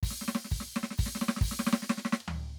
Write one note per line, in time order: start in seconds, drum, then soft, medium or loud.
0.03 kick medium
0.03 crash loud
0.11 snare soft
0.21 snare medium
0.28 snare medium
0.35 snare medium
0.44 snare soft
0.50 kick medium
0.50 crash medium
0.60 snare medium
0.76 snare medium
0.83 snare medium
0.91 snare medium
0.98 kick medium
0.98 hi-hat pedal soft
0.98 crash loud
1.06 snare medium
1.15 snare medium
1.21 snare medium
1.28 snare loud
1.36 snare medium
1.41 kick medium
1.41 crash loud
1.51 snare medium
1.59 snare medium
1.67 snare loud
1.73 snare loud
1.80 snare medium
1.80 hi-hat pedal soft
1.90 snare loud
1.97 snare medium
2.05 snare medium
2.12 snare loud
2.20 floor tom medium
2.28 floor tom loud